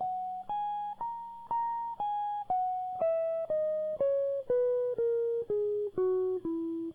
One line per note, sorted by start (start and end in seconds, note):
0.01 0.46 F#5
0.50 0.96 G#5
1.01 1.51 A#5
1.51 1.96 A#5
2.01 2.46 G#5
2.51 3.07 F#5
3.02 3.47 E5
3.51 3.98 D#5
4.01 4.43 C#5
4.51 4.97 B4
4.99 5.45 A#4
5.51 5.91 G#4
5.98 6.41 F#4
6.46 6.93 E4